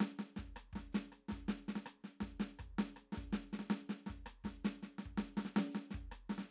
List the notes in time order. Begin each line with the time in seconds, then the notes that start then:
0.01 snare
0.20 snare, hi-hat pedal
0.37 kick, snare
0.56 cross-stick, hi-hat pedal
0.73 kick, snare
0.93 snare, hi-hat pedal
1.13 cross-stick
1.29 snare, hi-hat pedal
1.31 kick, snare
1.49 snare
1.69 snare, hi-hat pedal
1.76 snare
1.87 cross-stick
2.05 snare
2.09 hi-hat pedal
2.21 kick, snare
2.40 snare
2.47 hi-hat pedal
2.60 kick, cross-stick
2.79 snare
2.84 hi-hat pedal
2.97 cross-stick
3.13 snare
3.15 kick, snare, hi-hat pedal
3.33 snare
3.54 snare, hi-hat pedal
3.60 snare
3.71 snare
3.90 snare, hi-hat pedal
4.07 kick, snare
4.27 cross-stick, hi-hat pedal
4.45 kick, snare
4.65 snare, hi-hat pedal
4.83 snare
4.99 snare, hi-hat pedal
5.06 kick
5.18 snare
5.38 snare
5.46 snare
5.53 snare, hi-hat pedal
5.75 snare
5.91 kick, snare, hi-hat pedal
6.12 cross-stick
6.30 snare, hi-hat pedal
6.39 snare